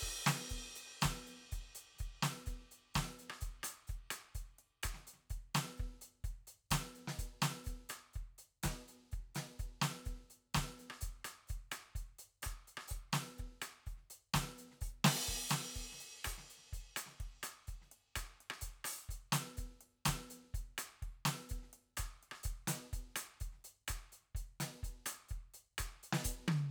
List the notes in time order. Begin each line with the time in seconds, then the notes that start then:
0.01 closed hi-hat, kick, hi-hat pedal
0.26 closed hi-hat, snare
0.49 closed hi-hat, kick
0.65 snare
0.71 snare
0.75 closed hi-hat
1.01 closed hi-hat, kick, snare
1.27 closed hi-hat
1.41 snare
1.52 closed hi-hat, kick
1.75 closed hi-hat
1.94 snare
1.99 closed hi-hat, kick
2.22 closed hi-hat, snare
2.46 closed hi-hat, kick, snare
2.53 snare
2.57 snare
2.71 closed hi-hat
2.94 closed hi-hat, kick, snare
3.02 snare
3.19 closed hi-hat
3.30 cross-stick
3.41 closed hi-hat, kick
3.63 closed hi-hat, cross-stick
3.87 open hi-hat, kick, hi-hat pedal
4.10 closed hi-hat, cross-stick
4.35 closed hi-hat, kick
4.48 snare
4.58 closed hi-hat
4.83 closed hi-hat, kick, cross-stick
4.94 snare
5.07 closed hi-hat
5.13 snare
5.30 closed hi-hat, kick
5.54 closed hi-hat, snare
5.63 snare
5.77 open hi-hat, kick
6.01 closed hi-hat
6.24 closed hi-hat, kick
6.47 closed hi-hat
6.71 closed hi-hat, kick, snare
6.80 snare
6.95 closed hi-hat
7.07 snare
7.19 closed hi-hat, kick
7.42 closed hi-hat, snare
7.49 snare
7.64 closed hi-hat, kick, hi-hat pedal
7.89 closed hi-hat, cross-stick
8.13 closed hi-hat, kick
8.38 closed hi-hat, snare
8.63 closed hi-hat, kick, snare
8.88 closed hi-hat
8.98 snare
9.12 closed hi-hat, kick
9.35 closed hi-hat, snare
9.59 closed hi-hat, kick
9.81 closed hi-hat, snare
9.90 snare
10.05 closed hi-hat, kick
10.16 snare
10.19 snare
10.30 closed hi-hat
10.54 closed hi-hat, kick, snare
10.60 snare
10.79 closed hi-hat
10.90 cross-stick
11.01 closed hi-hat, kick
11.24 closed hi-hat, cross-stick
11.47 closed hi-hat, kick, hi-hat pedal
11.71 closed hi-hat, cross-stick
11.95 closed hi-hat, kick
12.18 closed hi-hat
12.42 open hi-hat, kick, cross-stick
12.67 closed hi-hat
12.77 cross-stick
12.88 open hi-hat, kick
13.13 closed hi-hat, snare
13.38 open hi-hat, kick, hi-hat pedal
13.62 closed hi-hat, cross-stick
13.86 open hi-hat, kick
13.97 snare
14.01 snare
14.10 closed hi-hat
14.33 open hi-hat, kick, snare
14.41 snare
14.58 closed hi-hat
14.71 snare
14.81 open hi-hat, kick, hi-hat pedal
15.04 snare, crash
15.16 snare
15.26 open hi-hat, kick
15.49 closed hi-hat, snare
15.76 kick, open hi-hat
15.92 snare
15.96 snare
16.00 closed hi-hat
16.24 open hi-hat, kick, cross-stick
16.38 snare
16.50 closed hi-hat
16.57 snare
16.61 snare
16.64 snare
16.70 closed hi-hat, kick, snare
16.96 closed hi-hat, cross-stick
17.06 snare
17.20 kick, closed hi-hat
17.43 closed hi-hat, cross-stick
17.67 closed hi-hat, kick
17.81 snare
17.91 closed hi-hat
18.15 closed hi-hat, kick, cross-stick
18.40 closed hi-hat
18.50 cross-stick
18.61 closed hi-hat, kick
18.84 open hi-hat, cross-stick
19.08 closed hi-hat, kick, hi-hat pedal
19.32 closed hi-hat, snare
19.57 closed hi-hat, kick
19.81 closed hi-hat
20.05 closed hi-hat, kick, snare
20.11 snare
20.30 closed hi-hat
20.41 snare
20.54 closed hi-hat, kick
20.78 closed hi-hat, cross-stick
21.02 kick, closed hi-hat
21.25 closed hi-hat, snare
21.49 closed hi-hat, kick
21.63 snare
21.66 snare
21.73 closed hi-hat
21.97 closed hi-hat, kick, cross-stick
22.23 closed hi-hat
22.31 cross-stick
22.43 closed hi-hat, kick
22.67 closed hi-hat, snare
22.93 closed hi-hat, kick
23.16 closed hi-hat, cross-stick
23.40 closed hi-hat, kick
23.52 snare
23.58 snare
23.64 closed hi-hat
23.88 closed hi-hat, kick, cross-stick
24.12 closed hi-hat
24.21 snare
24.35 closed hi-hat, kick
24.60 closed hi-hat, snare
24.83 closed hi-hat, kick
25.06 closed hi-hat, cross-stick
25.29 closed hi-hat, kick
25.54 closed hi-hat
25.78 closed hi-hat, kick, cross-stick
25.91 snare
26.03 closed hi-hat
26.12 snare
26.24 closed hi-hat, kick
26.48 cross-stick, high tom